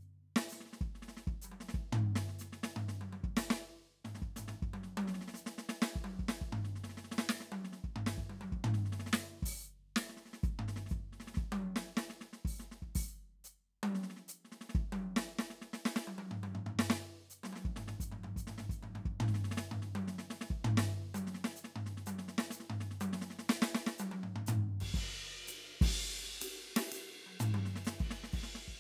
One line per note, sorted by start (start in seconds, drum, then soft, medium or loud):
0.01 hi-hat pedal soft
0.37 snare loud
0.50 snare soft
0.50 hi-hat pedal medium
0.61 snare soft
0.66 snare soft
0.74 snare soft
0.82 kick medium
0.96 snare soft
1.03 snare soft
1.09 snare soft
1.18 snare soft
1.28 kick medium
1.43 hi-hat pedal medium
1.43 high tom soft
1.53 high tom medium
1.61 snare soft
1.69 snare soft
1.75 kick medium
1.93 floor tom loud
2.16 snare medium
2.30 snare soft
2.40 snare soft
2.40 hi-hat pedal medium
2.53 snare soft
2.64 snare medium
2.77 floor tom loud
2.89 snare soft
3.02 high tom medium
3.14 high tom medium
3.25 kick soft
3.37 snare loud
3.37 hi-hat pedal medium
3.51 snare loud
4.05 snare soft
4.05 floor tom medium
4.16 snare soft
4.16 floor tom soft
4.23 kick soft
4.37 snare soft
4.37 floor tom medium
4.37 hi-hat pedal medium
4.49 snare soft
4.49 floor tom medium
4.63 kick medium
4.74 high tom medium
4.84 snare soft
4.98 high tom loud
5.08 snare soft
5.15 snare soft
5.22 snare soft
5.29 snare soft
5.35 snare soft
5.35 hi-hat pedal medium
5.47 snare medium
5.59 snare medium
5.70 snare medium
5.83 snare loud
5.96 kick soft
6.05 high tom medium
6.20 kick soft
6.29 snare medium
6.42 kick soft
6.53 floor tom loud
6.65 snare soft
6.76 snare soft
6.84 snare soft
6.90 snare soft
6.98 snare soft
7.05 snare soft
7.12 snare medium
7.19 snare medium
7.30 snare medium
7.41 snare soft
7.53 high tom medium
7.65 snare soft
7.73 snare soft
7.85 kick soft
7.97 floor tom medium
8.07 snare medium
8.19 kick soft
8.30 high tom medium
8.42 high tom medium
8.53 kick soft
8.65 floor tom loud
8.75 snare soft
8.86 snare soft
8.93 snare soft
9.00 snare soft
9.07 snare soft
9.14 snare loud
9.43 open hi-hat loud
9.43 kick medium
9.97 snare loud
10.10 snare soft
10.18 snare soft
10.23 snare soft
10.26 snare soft
10.34 snare soft
10.44 kick medium
10.44 hi-hat pedal soft
10.60 floor tom medium
10.69 snare soft
10.77 snare soft
10.87 snare soft
10.87 hi-hat pedal soft
10.92 kick medium
11.13 snare soft
11.21 snare soft
11.28 snare soft
11.35 kick medium
11.35 snare soft
11.53 high tom loud
11.77 snare medium
11.98 snare medium
11.98 hi-hat pedal soft
12.10 snare soft
12.22 snare soft
12.34 snare soft
12.46 open hi-hat medium
12.46 kick medium
12.60 snare soft
12.72 snare soft
12.83 kick soft
12.96 open hi-hat medium
12.96 kick medium
13.45 hi-hat pedal medium
13.84 high tom loud
13.96 snare soft
14.04 snare soft
14.11 snare soft
14.17 snare soft
14.29 hi-hat pedal loud
14.46 snare soft
14.53 snare soft
14.62 snare soft
14.70 snare soft
14.76 kick medium
14.93 high tom loud
15.17 snare loud
15.39 snare medium
15.51 snare soft
15.62 snare soft
15.74 snare medium
15.86 snare medium
15.97 snare medium
16.08 high tom medium
16.19 high tom medium
16.32 floor tom medium
16.44 high tom medium
16.56 floor tom medium
16.67 floor tom medium
16.80 snare loud
16.91 snare loud
17.31 hi-hat pedal medium
17.44 snare soft
17.44 high tom medium
17.54 snare soft
17.54 high tom medium
17.66 kick medium
17.77 snare soft
17.77 floor tom medium
17.89 snare soft
17.89 floor tom medium
18.01 kick soft
18.01 hi-hat pedal medium
18.12 floor tom medium
18.12 high tom soft
18.24 floor tom medium
18.24 high tom soft
18.37 kick soft
18.37 hi-hat pedal medium
18.48 snare soft
18.48 floor tom medium
18.59 snare soft
18.59 floor tom medium
18.70 kick soft
18.70 hi-hat pedal medium
18.84 floor tom medium
18.84 high tom soft
18.96 floor tom medium
18.96 high tom medium
19.06 kick medium
19.21 floor tom loud
19.29 snare soft
19.35 snare soft
19.45 snare soft
19.52 snare medium
19.58 snare medium
19.72 floor tom medium
19.83 snare soft
19.96 high tom loud
20.09 snare soft
20.19 snare soft
20.31 snare medium
20.42 snare medium
20.51 kick medium
20.65 floor tom loud
20.78 snare loud
21.02 snare soft
21.15 hi-hat pedal medium
21.15 high tom loud
21.28 snare soft
21.35 snare soft
21.45 snare medium
21.57 hi-hat pedal medium
21.65 snare soft
21.77 floor tom medium
21.87 snare soft
21.98 snare soft
22.07 hi-hat pedal medium
22.07 high tom medium
22.19 snare soft
22.29 snare soft
22.39 snare medium
22.51 snare medium
22.51 hi-hat pedal medium
22.61 snare soft
22.71 floor tom medium
22.81 snare soft
22.91 snare soft
23.01 hi-hat pedal medium
23.01 high tom loud
23.14 snare medium
23.22 snare medium
23.31 snare soft
23.40 snare medium
23.50 snare loud
23.50 hi-hat pedal medium
23.63 snare loud
23.75 snare medium
23.87 snare medium
23.99 hi-hat pedal medium
23.99 high tom loud
24.12 high tom medium
24.24 floor tom medium
24.37 floor tom medium
24.47 floor tom loud
24.47 hi-hat pedal loud
24.81 kick soft
24.81 ride medium
24.95 kick medium
24.95 crash medium
25.48 hi-hat pedal loud
25.48 ride medium
25.82 kick medium
25.82 ride loud
26.27 snare soft
26.42 hi-hat pedal loud
26.42 ride loud
26.77 snare loud
26.77 ride loud
26.93 hi-hat pedal medium
26.93 ride loud
27.27 high tom soft
27.40 floor tom loud
27.40 hi-hat pedal loud
27.55 high tom medium
27.66 snare soft
27.76 snare soft
27.86 snare medium
27.86 hi-hat pedal medium
28.01 kick medium
28.01 crash medium
28.11 snare medium
28.24 snare soft
28.34 kick medium
28.34 ride medium
28.44 snare soft
28.56 snare soft
28.69 kick soft